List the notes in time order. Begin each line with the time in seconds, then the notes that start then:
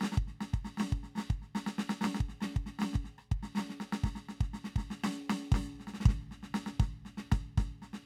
0.01 snare
0.04 snare
0.12 snare
0.17 kick
0.27 snare
0.41 snare
0.53 kick, snare
0.65 snare
0.77 snare
0.80 snare
0.92 kick, snare
1.03 snare
1.15 snare
1.18 snare
1.30 kick, snare
1.42 snare
1.55 snare
1.67 snare
1.78 snare
1.89 snare
2.01 snare
2.04 snare
2.15 snare
2.20 kick
2.29 snare
2.41 cross-stick, snare
2.55 kick, snare
2.66 snare
2.79 snare
2.82 snare
2.93 kick, snare
3.04 snare
3.18 cross-stick
3.31 kick, cross-stick
3.43 snare
3.55 snare
3.57 snare
3.70 snare
3.80 snare
3.92 snare
4.04 kick, snare
4.15 snare
4.29 snare
4.41 kick, snare
4.54 snare
4.64 snare
4.76 kick, snare
4.90 snare
5.04 snare
5.30 snare
5.52 kick, snare
5.54 snare
5.80 snare
5.87 snare
5.94 snare
6.00 snare
6.06 kick, snare
6.31 snare
6.43 snare
6.54 snare
6.66 snare
6.80 kick, snare
7.05 snare
7.17 snare
7.32 kick, snare
7.58 kick, snare
7.82 snare
7.93 snare